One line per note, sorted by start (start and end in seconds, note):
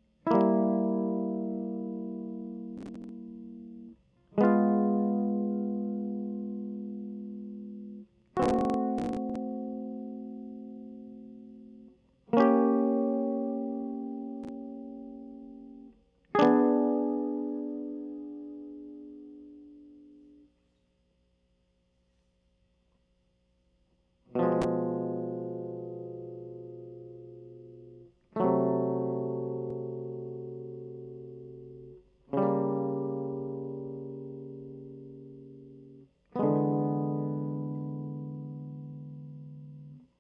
0.27 3.98 E4
0.32 3.92 G3
0.32 3.97 A#3
4.39 8.06 G#3
4.39 8.04 B3
4.44 8.06 F4
8.37 11.96 C4
8.37 12.00 F#4
8.43 11.93 A3
12.34 15.95 A#3
12.34 15.92 C#4
12.41 15.96 G4
16.36 20.51 D4
16.36 20.46 G#4
16.43 20.38 B3
24.37 28.10 B2
24.37 28.11 F3
24.44 28.06 G#3
28.37 32.03 F#3
28.37 31.98 A3
28.46 31.96 C3
32.35 36.08 C#3
32.35 36.08 G3
32.43 36.05 A#3
36.37 39.98 G#3
36.37 39.97 B3
36.44 40.00 D3
36.49 40.10 E2